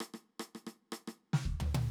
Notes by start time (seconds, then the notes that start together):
0.00 cross-stick
0.14 cross-stick
0.40 cross-stick
0.55 cross-stick
0.67 cross-stick
0.92 cross-stick
1.07 cross-stick
1.33 snare
1.45 kick
1.60 floor tom
1.75 high tom